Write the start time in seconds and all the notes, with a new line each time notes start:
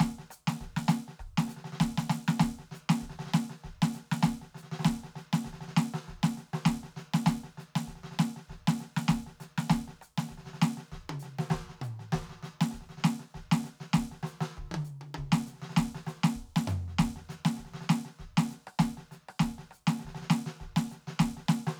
0.01 kick, snare
0.20 snare
0.32 cross-stick, hi-hat pedal
0.48 snare
0.62 kick, snare
0.78 snare
0.89 snare, hi-hat pedal
1.09 snare
1.21 kick, cross-stick
1.39 snare
1.49 snare, hi-hat pedal
1.58 snare
1.66 snare
1.74 snare
1.81 kick, snare
1.99 snare
2.11 snare
2.15 hi-hat pedal
2.29 snare
2.41 kick, snare
2.60 snare
2.72 snare, hi-hat pedal
2.90 snare
3.02 kick, snare
3.11 snare
3.20 snare
3.27 snare
3.35 snare, hi-hat pedal
3.51 snare
3.65 kick, snare
3.83 snare
3.95 snare, hi-hat pedal
4.13 snare
4.24 kick, snare
4.43 snare
4.56 snare, hi-hat pedal
4.64 snare
4.73 snare
4.80 snare
4.86 kick, snare
5.05 snare
5.17 snare, hi-hat pedal
5.34 snare
5.46 kick, snare
5.54 snare
5.62 snare
5.69 snare
5.78 snare, hi-hat pedal
5.95 snare
6.09 kick, snare
6.24 snare
6.39 snare, hi-hat pedal
6.54 snare
6.66 kick, snare
6.84 snare
6.97 snare, hi-hat pedal
7.15 snare
7.27 kick, snare
7.45 snare
7.59 snare, hi-hat pedal
7.77 snare
7.88 kick, snare
7.97 snare
8.04 snare
8.12 snare
8.20 snare, hi-hat pedal
8.37 snare
8.50 kick, snare
8.69 snare
8.79 snare, hi-hat pedal
8.98 snare
9.09 kick, snare
9.28 snare
9.41 snare, hi-hat pedal
9.59 snare
9.71 kick, snare
9.89 snare
10.03 cross-stick, hi-hat pedal
10.19 snare
10.30 kick, snare
10.39 snare
10.46 snare
10.47 snare
10.55 snare
10.62 snare, hi-hat pedal
10.78 snare
10.93 kick, snare
11.11 high tom
11.21 snare, hi-hat pedal
11.40 snare
11.51 kick, snare
11.70 snare
11.83 hi-hat pedal, mid tom
12.01 snare
12.14 kick, snare
12.31 snare
12.44 snare, hi-hat pedal
12.62 snare
12.72 kick, snare
12.82 snare
12.90 snare
12.98 snare
13.05 snare, hi-hat pedal
13.21 snare
13.35 kick, snare
13.53 snare
13.65 snare, hi-hat pedal
13.81 snare
13.94 kick, snare
14.13 snare
14.24 snare, hi-hat pedal
14.42 snare
14.58 kick, high tom
14.73 high tom
14.75 high tom
14.86 hi-hat pedal
15.02 high tom
15.16 kick, high tom
15.33 snare
15.48 snare, hi-hat pedal
15.54 snare
15.58 snare
15.63 snare
15.71 snare
15.78 kick, snare
15.96 snare
16.08 snare, hi-hat pedal
16.25 snare
16.37 kick
16.57 snare
16.69 floor tom, hi-hat pedal
16.89 snare
17.00 kick, snare
17.06 kick
17.17 snare
17.30 snare, hi-hat pedal
17.46 snare
17.58 kick, snare
17.66 snare
17.73 snare
17.75 snare
17.82 snare
17.91 snare, hi-hat pedal
18.06 snare
18.20 kick, snare
18.38 snare
18.51 snare, hi-hat pedal
18.68 cross-stick
18.80 kick, snare
18.98 snare
19.12 snare, hi-hat pedal
19.30 cross-stick
19.41 kick, snare
19.59 snare
19.72 cross-stick, hi-hat pedal
19.88 snare
20.01 snare
20.06 kick, snare
20.16 snare
20.23 snare
20.31 snare, hi-hat pedal
20.47 snare
20.61 kick, snare
20.77 snare
20.92 snare, hi-hat pedal
21.08 snare
21.20 kick, snare
21.38 snare
21.50 snare, hi-hat pedal
21.68 snare